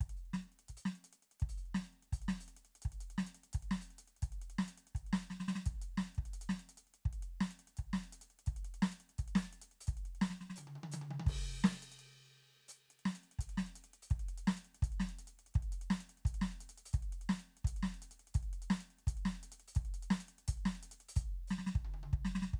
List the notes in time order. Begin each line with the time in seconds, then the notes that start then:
0.01 kick, closed hi-hat
0.10 closed hi-hat
0.17 closed hi-hat
0.26 closed hi-hat
0.34 snare
0.43 closed hi-hat
0.52 closed hi-hat
0.59 closed hi-hat
0.69 kick, closed hi-hat
0.77 closed hi-hat
0.85 snare
0.96 closed hi-hat
1.04 closed hi-hat
1.13 closed hi-hat
1.23 closed hi-hat
1.32 closed hi-hat
1.40 kick, closed hi-hat
1.49 closed hi-hat
1.58 closed hi-hat
1.66 closed hi-hat
1.75 snare
1.84 closed hi-hat
1.93 closed hi-hat
2.03 closed hi-hat
2.13 closed hi-hat, kick
2.22 closed hi-hat
2.28 snare
2.40 closed hi-hat
2.48 closed hi-hat
2.57 closed hi-hat
2.65 closed hi-hat
2.75 closed hi-hat
2.82 kick, closed hi-hat
2.92 closed hi-hat
3.01 closed hi-hat
3.10 closed hi-hat
3.18 snare
3.27 closed hi-hat
3.35 closed hi-hat
3.44 closed hi-hat
3.53 kick, closed hi-hat
3.63 closed hi-hat
3.71 snare
3.81 closed hi-hat
3.91 closed hi-hat
3.99 closed hi-hat
4.08 closed hi-hat
4.17 closed hi-hat
4.22 kick, closed hi-hat
4.32 closed hi-hat
4.42 closed hi-hat
4.50 closed hi-hat
4.59 snare
4.68 closed hi-hat
4.78 closed hi-hat
4.87 closed hi-hat
4.95 kick, closed hi-hat
5.07 closed hi-hat
5.13 snare
5.23 closed hi-hat
5.30 snare
5.40 snare
5.48 snare
5.55 snare
5.66 kick, closed hi-hat
5.82 closed hi-hat
5.98 snare
6.15 kick, closed hi-hat
6.26 closed hi-hat
6.34 closed hi-hat
6.41 closed hi-hat
6.49 snare
6.60 closed hi-hat
6.69 closed hi-hat
6.77 closed hi-hat
6.87 closed hi-hat
6.94 closed hi-hat
7.05 kick
7.13 closed hi-hat
7.23 closed hi-hat
7.41 snare
7.51 closed hi-hat
7.59 closed hi-hat
7.67 closed hi-hat
7.77 kick, closed hi-hat
7.93 snare
8.04 closed hi-hat
8.13 closed hi-hat
8.21 closed hi-hat
8.30 closed hi-hat
8.39 closed hi-hat
8.46 kick, closed hi-hat
8.56 closed hi-hat
8.65 closed hi-hat
8.74 closed hi-hat
8.82 snare
8.92 closed hi-hat
9.00 closed hi-hat
9.09 closed hi-hat
9.19 kick, closed hi-hat
9.28 closed hi-hat
9.35 snare
9.45 closed hi-hat
9.53 closed hi-hat
9.62 closed hi-hat
9.72 closed hi-hat
9.81 closed hi-hat
9.87 kick, closed hi-hat
9.97 closed hi-hat
10.05 closed hi-hat
10.15 closed hi-hat
10.22 snare
10.30 snare
10.41 snare
10.50 snare
10.56 hi-hat pedal, high tom
10.67 high tom
10.76 high tom
10.84 high tom
10.92 hi-hat pedal, high tom
11.02 high tom
11.11 high tom
11.20 high tom
11.27 kick, crash
11.64 snare
11.73 closed hi-hat
11.82 closed hi-hat
11.92 closed hi-hat
11.99 closed hi-hat
12.69 hi-hat pedal
12.90 closed hi-hat
12.99 closed hi-hat
13.06 snare
13.15 closed hi-hat
13.24 closed hi-hat
13.31 closed hi-hat
13.39 kick, closed hi-hat
13.49 closed hi-hat
13.58 snare
13.67 closed hi-hat
13.76 closed hi-hat
13.84 closed hi-hat
13.94 closed hi-hat
14.02 closed hi-hat
14.10 kick, closed hi-hat
14.20 closed hi-hat
14.29 closed hi-hat
14.38 closed hi-hat
14.47 snare
14.57 closed hi-hat
14.65 closed hi-hat
14.75 closed hi-hat
14.82 kick, closed hi-hat
14.92 closed hi-hat
15.00 snare
15.09 closed hi-hat
15.19 closed hi-hat
15.27 closed hi-hat
15.39 closed hi-hat
15.47 closed hi-hat
15.54 kick, closed hi-hat
15.63 closed hi-hat
15.72 closed hi-hat
15.82 closed hi-hat
15.90 snare
16.01 closed hi-hat
16.09 closed hi-hat
16.17 closed hi-hat
16.25 kick, closed hi-hat
16.34 closed hi-hat
16.42 snare
16.52 closed hi-hat
16.61 closed hi-hat
16.69 closed hi-hat
16.78 closed hi-hat
16.86 closed hi-hat
16.93 kick, closed hi-hat
17.03 closed hi-hat
17.12 closed hi-hat
17.21 closed hi-hat
17.29 snare
17.40 closed hi-hat
17.50 closed hi-hat
17.57 closed hi-hat
17.65 kick, closed hi-hat
17.77 closed hi-hat
17.83 snare
17.94 closed hi-hat
18.02 closed hi-hat
18.11 closed hi-hat
18.20 closed hi-hat
18.27 closed hi-hat
18.34 kick, closed hi-hat
18.43 closed hi-hat
18.53 closed hi-hat
18.62 closed hi-hat
18.70 snare
18.81 closed hi-hat
18.91 closed hi-hat
18.99 closed hi-hat
19.07 kick, closed hi-hat
19.17 closed hi-hat
19.25 snare
19.36 closed hi-hat
19.43 closed hi-hat
19.52 closed hi-hat
19.60 closed hi-hat
19.68 closed hi-hat
19.75 kick, closed hi-hat
19.85 closed hi-hat
19.94 closed hi-hat
20.03 closed hi-hat
20.11 snare
20.21 closed hi-hat
20.29 closed hi-hat
20.39 closed hi-hat
20.48 kick, closed hi-hat
20.57 closed hi-hat
20.66 snare
20.75 closed hi-hat
20.83 closed hi-hat
20.92 closed hi-hat
21.00 closed hi-hat
21.09 closed hi-hat
21.16 open hi-hat, kick
21.48 snare, hi-hat pedal
21.58 snare
21.67 snare
21.75 kick
21.85 high tom
21.94 high tom
22.03 high tom
22.13 kick
22.25 snare
22.35 snare
22.42 snare
22.53 kick